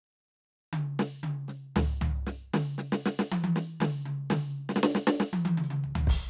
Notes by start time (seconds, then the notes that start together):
0.73 mid tom
0.99 snare
1.23 mid tom
1.48 snare
1.76 snare, floor tom
2.01 floor tom
2.27 snare
2.54 snare, mid tom
2.78 snare
2.92 snare
3.06 snare
3.19 snare
3.32 high tom
3.44 high tom
3.49 hi-hat pedal
3.56 snare
3.80 snare, mid tom
4.06 mid tom
4.30 snare, mid tom
4.69 snare
4.76 snare
4.83 snare
4.95 snare
5.07 snare
5.20 snare
5.33 high tom
5.45 high tom
5.57 mid tom
5.63 hi-hat pedal
5.70 mid tom
5.84 floor tom
5.95 floor tom
6.07 kick, crash